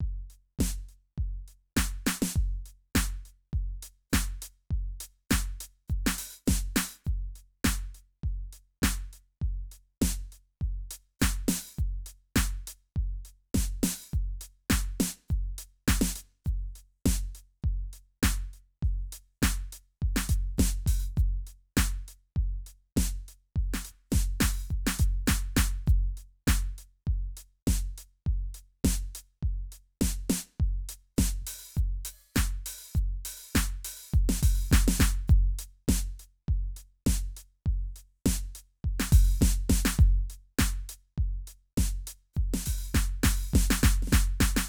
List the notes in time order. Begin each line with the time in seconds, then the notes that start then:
0.01 kick
0.30 closed hi-hat
0.59 kick, snare, closed hi-hat
0.89 closed hi-hat
1.18 kick
1.48 closed hi-hat
1.77 kick, snare
2.07 closed hi-hat, snare
2.22 snare
2.36 kick
2.66 closed hi-hat
2.95 kick, snare, closed hi-hat
3.26 closed hi-hat
3.53 kick, closed hi-hat
3.83 closed hi-hat
4.10 kick, snare, hi-hat pedal
4.42 closed hi-hat
4.71 kick, closed hi-hat
5.01 closed hi-hat
5.30 kick, snare, hi-hat pedal
5.61 closed hi-hat
5.88 kick, hi-hat pedal
6.07 snare
6.19 open hi-hat
6.46 kick, snare, hi-hat pedal
6.76 open hi-hat, snare
7.05 kick, hi-hat pedal
7.36 closed hi-hat
7.65 kick, snare
7.95 closed hi-hat
8.24 kick, closed hi-hat
8.53 closed hi-hat
8.83 kick, snare
9.13 closed hi-hat
9.42 kick, closed hi-hat
9.72 closed hi-hat
10.02 kick, snare
10.32 closed hi-hat
10.62 kick, closed hi-hat
10.91 open hi-hat
11.20 kick, snare, hi-hat pedal
11.49 open hi-hat, snare
11.77 kick, hi-hat pedal
12.06 closed hi-hat
12.36 kick, snare
12.68 closed hi-hat
12.96 kick, closed hi-hat
13.25 closed hi-hat
13.55 kick, snare
13.83 open hi-hat, snare
14.12 kick, hi-hat pedal
14.41 closed hi-hat
14.70 kick, snare
15.00 closed hi-hat, snare
15.29 kick, closed hi-hat, hi-hat pedal
15.59 closed hi-hat
15.88 kick, snare
16.02 snare
16.13 closed hi-hat, kick
16.45 kick, closed hi-hat, hi-hat pedal
16.50 crash
16.76 closed hi-hat
17.06 kick, snare
17.35 closed hi-hat
17.63 kick, closed hi-hat
17.93 closed hi-hat
18.23 kick, snare
18.54 closed hi-hat
18.83 kick, snare, closed hi-hat, crash, ride
19.13 closed hi-hat
19.42 kick, snare
19.73 closed hi-hat
20.02 kick, crash
20.16 snare
20.29 open hi-hat, kick
20.58 kick, snare, hi-hat pedal
20.87 open hi-hat, kick
21.17 kick, hi-hat pedal
21.47 closed hi-hat
21.77 kick, snare
22.08 closed hi-hat
22.37 kick
22.67 closed hi-hat
22.97 kick, snare, closed hi-hat
23.29 closed hi-hat
23.56 kick, crash
23.74 snare
23.85 closed hi-hat
23.90 kick
24.11 kick, snare, hi-hat pedal
24.41 open hi-hat, kick, snare
24.68 kick, hi-hat pedal
24.87 snare
24.99 closed hi-hat, kick
25.27 kick, snare, hi-hat pedal
25.57 open hi-hat, kick, snare
25.87 kick, hi-hat pedal
26.17 closed hi-hat
26.48 kick, snare
26.78 closed hi-hat
27.07 kick
27.37 closed hi-hat
27.68 kick, snare
27.98 closed hi-hat
28.27 kick, ride
28.55 closed hi-hat
28.85 kick, snare
29.15 closed hi-hat
29.43 kick, closed hi-hat
29.72 closed hi-hat
30.01 kick, snare
30.30 closed hi-hat, snare
30.60 kick
30.89 closed hi-hat
31.17 kick, snare, hi-hat pedal
31.42 kick
31.47 open hi-hat
31.76 kick, hi-hat pedal
32.05 open hi-hat, hi-hat pedal
32.35 kick, snare, hi-hat pedal
32.66 open hi-hat, hi-hat pedal
32.95 kick, hi-hat pedal
33.25 open hi-hat
33.54 kick, snare, hi-hat pedal
33.85 open hi-hat, hi-hat pedal
34.12 kick, closed hi-hat, hi-hat pedal
34.29 snare
34.43 open hi-hat, kick
34.71 kick, snare, hi-hat pedal
34.88 snare
35.00 kick, snare
35.28 kick, hi-hat pedal
35.59 closed hi-hat
35.88 kick, snare
36.20 closed hi-hat
36.49 kick
36.77 closed hi-hat
37.07 kick, snare
37.37 closed hi-hat
37.66 kick, crash, ride
37.96 closed hi-hat
38.26 kick, snare
38.55 closed hi-hat
38.85 kick
39.00 snare
39.13 open hi-hat, kick
39.42 kick, snare
39.70 kick, snare
39.85 snare
39.98 kick, hi-hat pedal
40.30 closed hi-hat
40.59 kick, snare
40.89 closed hi-hat
41.18 kick
41.48 closed hi-hat
41.78 kick, snare
42.05 closed hi-hat, kick
42.34 kick, hi-hat pedal
42.41 crash
42.54 snare
42.66 open hi-hat, kick
42.95 kick, snare
43.24 open hi-hat, kick, snare
43.54 kick, snare
43.71 snare
43.83 kick, snare
44.03 snare
44.08 snare
44.13 kick, snare, hi-hat pedal
44.41 kick, snare
44.57 snare